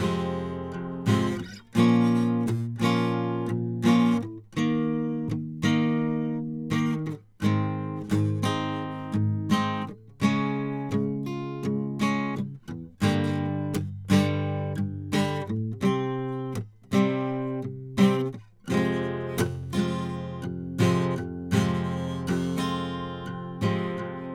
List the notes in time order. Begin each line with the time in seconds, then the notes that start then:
0.00 F2 C3 F3 G#3
0.05 C4
0.73 F2
1.07 F2 C3 F3 G#3
1.11 C4
1.76 A#2 F3 A#3
1.80 C#4 F4
2.49 A#2
2.81 A#2 F3 A#3
2.85 C#4 F4
3.50 A#2 F3
3.75 C#4
3.85 A#2 F3 A#3
3.90 F4
4.58 D#3 A#3 D#4
5.32 D#3
5.64 D#3 A#3 D#4
6.66 D#4
6.72 D#3 A#3
7.08 D3
7.43 G#2 D#3 G#3 C4
8.12 G#2 D#3 G#3
8.44 C4 D#4 G#4
9.14 G#2 D#3
9.51 G#3 C4 D#4
10.23 C#3 G#3 C#4
10.93 C#3 G#3
11.27 F4
11.65 C#3 G#3
12.02 G#3 C#4 F4
12.37 C#3
12.69 E2
13.03 G2 D3 G3 A#3
13.76 G2 D3
14.11 G2 D3 G3
14.77 G2
14.96 D3
15.14 G3
15.51 A2
15.84 C3 C4
16.94 C3 G3 C4
17.64 C3
17.99 C3 C4
18.69 F2 C3
18.73 F3 G#3
18.78 C4
19.39 F2 C3 F3
19.74 F3 G#3 C4 F4
19.79 C3
20.43 F2 C3
20.81 C3 F3 G#3 C4
21.19 F2
21.53 F2 C3 F3 G#3
21.58 C4
22.29 F2 C3
22.58 G#3 C4 F4
23.27 F2
23.63 C3 F3 G#3 C4
23.98 F2 C3